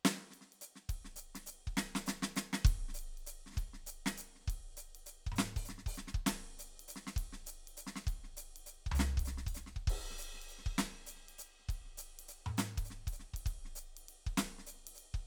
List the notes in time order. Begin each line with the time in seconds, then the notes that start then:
0.05 snare, ride
0.30 snare, ride
0.41 snare
0.45 snare
0.52 ride
0.61 hi-hat pedal, ride
0.76 snare
0.89 kick, ride
1.04 snare
1.16 hi-hat pedal, ride
1.35 snare, ride
1.46 hi-hat pedal, ride
1.67 kick
1.77 snare, ride
1.95 snare
2.06 snare, hi-hat pedal
2.22 snare
2.36 snare, hi-hat pedal
2.53 snare
2.65 kick, ride
2.88 snare
2.94 hi-hat pedal
2.99 ride
3.17 ride
3.26 hi-hat pedal, ride
3.46 snare
3.49 snare
3.52 snare
3.55 kick, snare, ride
3.73 snare
3.86 hi-hat pedal, ride
4.06 snare, ride
4.17 hi-hat pedal, ride
4.35 snare
4.40 snare
4.47 kick, ride
4.77 hi-hat pedal, ride
4.95 ride
5.06 hi-hat pedal, ride
5.26 kick
5.32 mid tom
5.36 snare, hi-hat pedal
5.56 open hi-hat, kick
5.65 snare, hi-hat pedal
5.78 snare
5.86 open hi-hat, kick
5.94 snare, hi-hat pedal
6.07 snare
6.14 kick
6.26 snare, ride
6.59 hi-hat pedal, ride
6.79 ride
6.88 hi-hat pedal, ride
6.96 snare
7.07 snare
7.16 kick, ride
7.32 snare
7.46 hi-hat pedal, ride
7.67 ride
7.77 hi-hat pedal, ride
7.87 snare
7.96 snare
8.07 kick, ride
8.23 snare
8.37 hi-hat pedal, ride
8.56 ride
8.66 hi-hat pedal, ride
8.86 kick
8.91 floor tom, hi-hat pedal
8.99 snare
9.17 kick, ride
9.25 snare, hi-hat pedal
9.46 kick, ride bell
9.54 snare, hi-hat pedal
9.66 snare
9.76 kick
9.87 kick, crash
10.10 snare
10.18 hi-hat pedal
10.23 ride
10.34 snare
10.42 ride
10.48 hi-hat pedal
10.58 snare
10.66 kick
10.78 snare, ride
11.06 hi-hat pedal, ride
11.16 snare
11.22 snare
11.28 ride
11.38 hi-hat pedal, ride
11.59 snare
11.69 kick, ride
11.85 snare
11.97 hi-hat pedal, ride
12.19 ride
12.28 hi-hat pedal
12.46 mid tom
12.58 snare, hi-hat pedal
12.77 kick, ride
12.85 hi-hat pedal
12.90 snare
13.07 kick, ride
13.12 hi-hat pedal
13.19 snare
13.33 kick, ride
13.46 kick, ride
13.65 snare
13.75 hi-hat pedal, ride
13.97 ride
14.09 ride
14.26 kick
14.37 snare, ride
14.58 snare
14.66 hi-hat pedal, ride
14.87 ride
14.95 hi-hat pedal, ride
15.14 kick